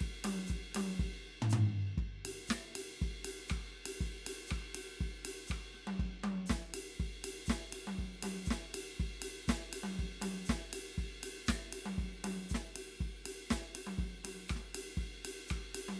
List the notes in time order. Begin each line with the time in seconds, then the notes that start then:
0.01 kick, ride
0.25 high tom, ride
0.47 kick, hi-hat pedal
0.75 high tom, ride
1.00 kick
1.42 floor tom
1.50 floor tom, hi-hat pedal
1.98 kick
2.25 ride
2.48 kick, snare, hi-hat pedal
2.76 ride
2.97 hi-hat pedal
3.02 kick
3.25 ride
3.48 kick, cross-stick, hi-hat pedal
3.86 ride
4.01 kick
4.27 ride
4.47 cross-stick, hi-hat pedal
4.52 kick
4.75 ride
5.01 kick
5.25 ride
5.47 kick, hi-hat pedal
5.51 cross-stick
5.74 snare
5.87 high tom
6.00 kick
6.24 high tom
6.46 snare, hi-hat pedal
6.51 kick
6.74 ride
7.00 kick
7.24 ride
7.46 kick, snare, hi-hat pedal
7.73 ride
7.88 high tom
7.99 kick
8.23 high tom, ride
8.46 kick, hi-hat pedal
8.51 snare
8.75 ride
9.00 kick
9.22 ride
9.48 kick, snare, hi-hat pedal
9.73 ride
9.84 high tom
9.99 kick
10.22 closed hi-hat, high tom, ride
10.46 kick, hi-hat pedal
10.50 snare
10.73 ride
10.98 kick
11.24 ride
11.47 kick, snare, hi-hat pedal
11.73 ride
11.86 high tom
11.98 kick
12.24 closed hi-hat, high tom, ride
12.49 kick, hi-hat pedal
12.55 snare
12.76 ride
13.01 kick
13.26 ride
13.50 kick, snare, hi-hat pedal
13.75 ride
13.87 closed hi-hat, high tom
13.99 kick
14.25 closed hi-hat, high tom, ride
14.49 kick, cross-stick, hi-hat pedal
14.56 snare
14.75 ride
14.97 kick
15.25 ride
15.48 kick, cross-stick, hi-hat pedal
15.75 ride
15.89 high tom